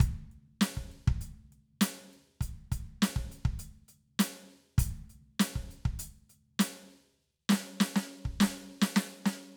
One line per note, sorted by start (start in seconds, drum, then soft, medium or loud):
0.00 kick loud
0.00 closed hi-hat medium
0.31 closed hi-hat soft
0.61 closed hi-hat medium
0.61 snare loud
0.77 kick medium
0.92 closed hi-hat soft
1.07 kick loud
1.21 closed hi-hat medium
1.52 closed hi-hat soft
1.81 closed hi-hat loud
1.81 snare loud
2.13 closed hi-hat soft
2.41 closed hi-hat medium
2.41 kick medium
2.72 closed hi-hat medium
2.72 kick medium
3.02 closed hi-hat medium
3.02 snare loud
3.16 kick medium
3.31 closed hi-hat soft
3.45 kick loud
3.59 closed hi-hat medium
3.88 closed hi-hat soft
4.19 closed hi-hat loud
4.19 snare loud
4.78 closed hi-hat loud
4.78 kick loud
5.09 closed hi-hat soft
5.40 closed hi-hat loud
5.40 snare loud
5.55 kick medium
5.71 closed hi-hat soft
5.85 kick medium
5.85 crash soft
5.99 closed hi-hat loud
6.29 closed hi-hat soft
6.59 closed hi-hat loud
6.59 snare loud
7.49 snare loud
7.52 snare loud
7.80 snare loud
7.96 snare loud
8.25 kick medium
8.40 snare loud
8.43 snare loud
8.82 snare loud
8.96 snare loud
9.26 snare loud